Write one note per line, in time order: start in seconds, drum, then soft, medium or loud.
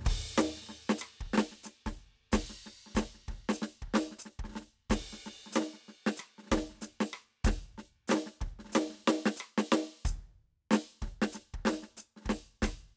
0.01 snare soft
0.04 kick loud
0.04 snare soft
0.04 ride loud
0.08 snare soft
0.38 snare loud
0.38 hi-hat pedal loud
0.57 snare soft
0.62 snare soft
0.66 snare soft
0.69 snare soft
0.90 snare loud
0.99 cross-stick medium
0.99 hi-hat pedal loud
1.21 kick soft
1.34 snare medium
1.38 snare loud
1.52 snare soft
1.64 snare soft
1.64 hi-hat pedal loud
1.87 kick medium
1.87 snare medium
2.33 kick medium
2.33 snare loud
2.33 hi-hat pedal loud
2.33 crash medium
2.50 snare soft
2.67 snare soft
2.87 snare soft
2.91 snare soft
2.96 kick medium
2.96 snare loud
2.96 hi-hat pedal loud
3.01 snare soft
3.15 snare soft
3.19 snare soft
3.29 kick medium
3.29 snare soft
3.35 snare soft
3.50 snare loud
3.50 hi-hat pedal loud
3.63 snare medium
3.83 kick soft
3.95 snare loud
3.96 snare loud
4.12 snare soft
4.19 hi-hat pedal loud
4.26 snare soft
4.40 kick medium
4.45 snare soft
4.49 snare soft
4.52 snare soft
4.56 snare medium
4.61 snare soft
4.91 kick medium
4.91 snare loud
4.91 hi-hat pedal loud
4.91 ride medium
5.13 snare soft
5.27 snare soft
5.47 snare soft
5.51 snare soft
5.51 hi-hat pedal loud
5.55 snare soft
5.57 snare loud
5.74 snare soft
5.89 snare soft
6.07 snare loud
6.17 cross-stick medium
6.17 hi-hat pedal loud
6.39 snare soft
6.44 snare soft
6.47 snare soft
6.52 kick medium
6.52 snare loud
6.57 snare soft
6.70 snare soft
6.75 snare soft
6.78 snare soft
6.78 hi-hat pedal loud
6.83 snare soft
7.01 snare loud
7.14 cross-stick medium
7.45 kick loud
7.45 snare medium
7.45 hi-hat pedal loud
7.79 snare soft
8.08 snare medium
8.08 hi-hat pedal loud
8.12 snare loud
8.16 snare medium
8.27 snare soft
8.42 kick medium
8.42 snare soft
8.60 snare soft
8.65 snare soft
8.69 snare soft
8.73 snare soft
8.73 hi-hat pedal loud
8.76 snare loud
8.90 snare soft
8.94 snare soft
8.97 snare soft
9.00 snare soft
9.06 snare soft
9.08 snare loud
9.26 snare loud
9.37 cross-stick medium
9.37 hi-hat pedal loud
9.59 snare loud
9.73 snare loud
10.06 kick medium
10.06 hi-hat pedal loud
10.72 snare loud
10.72 hi-hat pedal loud
10.74 snare loud
10.88 snare soft
10.93 snare soft
11.03 kick medium
11.03 snare soft
11.07 snare soft
11.23 snare loud
11.33 snare soft
11.33 hi-hat pedal loud
11.55 kick soft
11.66 snare medium
11.68 snare medium
11.73 snare soft
11.83 snare soft
11.98 snare soft
11.98 hi-hat pedal loud
12.17 snare soft
12.22 snare soft
12.25 kick soft
12.25 snare soft
12.28 snare soft
12.30 snare medium
12.63 kick medium
12.63 cross-stick medium
12.63 snare medium
12.63 hi-hat pedal loud